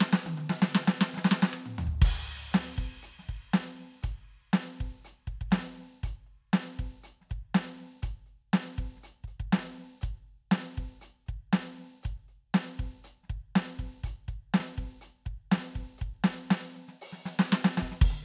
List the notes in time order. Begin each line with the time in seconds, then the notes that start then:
0.01 snare
0.13 snare
0.27 high tom
0.38 high tom
0.50 snare
0.62 snare
0.75 snare
0.88 snare
1.01 snare
1.14 snare
1.18 snare
1.25 snare
1.32 snare
1.43 snare
1.54 cross-stick
1.66 mid tom
1.79 floor tom
1.87 kick
2.02 kick, crash
2.52 closed hi-hat, snare, hi-hat pedal
2.78 kick, closed hi-hat
3.03 closed hi-hat
3.19 snare
3.27 closed hi-hat, kick
3.54 closed hi-hat, snare
3.77 closed hi-hat
4.03 closed hi-hat, kick
4.18 snare
4.25 closed hi-hat
4.54 closed hi-hat, snare
4.78 kick, closed hi-hat
5.05 closed hi-hat
5.28 closed hi-hat, kick
5.41 kick
5.51 closed hi-hat, kick, snare
5.57 snare
5.78 closed hi-hat
6.04 closed hi-hat, kick
6.27 closed hi-hat
6.54 closed hi-hat, snare
6.78 kick, closed hi-hat
7.04 closed hi-hat
7.22 snare
7.30 closed hi-hat, kick
7.55 closed hi-hat, snare
7.78 closed hi-hat
8.03 closed hi-hat, kick
8.26 closed hi-hat
8.54 closed hi-hat, snare
8.78 closed hi-hat, kick
8.97 snare
9.04 closed hi-hat
9.24 closed hi-hat, kick
9.40 kick
9.53 closed hi-hat, snare
9.58 snare
9.78 closed hi-hat
10.02 closed hi-hat, kick
10.24 closed hi-hat
10.52 closed hi-hat, snare
10.58 snare
10.75 closed hi-hat, kick
11.02 closed hi-hat
11.27 closed hi-hat, kick
11.53 closed hi-hat, snare
11.78 closed hi-hat
12.04 closed hi-hat, kick
12.29 closed hi-hat
12.55 closed hi-hat, snare
12.79 closed hi-hat, kick
12.88 kick
13.05 closed hi-hat
13.24 snare
13.30 kick, closed hi-hat
13.56 closed hi-hat, snare
13.79 kick, closed hi-hat
14.04 closed hi-hat, kick
14.29 closed hi-hat, kick
14.54 closed hi-hat, snare
14.60 snare
14.78 kick, closed hi-hat
15.02 closed hi-hat
15.26 kick, closed hi-hat
15.52 closed hi-hat, snare
15.58 snare
15.76 closed hi-hat, kick
15.99 open hi-hat, kick
16.24 open hi-hat, snare
16.51 open hi-hat, snare
16.74 closed hi-hat, hi-hat pedal
16.89 snare
17.02 open hi-hat
17.13 snare
17.26 snare
17.40 snare
17.48 hi-hat pedal
17.53 snare
17.65 snare
17.78 snare
17.82 kick
17.92 snare
18.02 kick, crash
18.11 high tom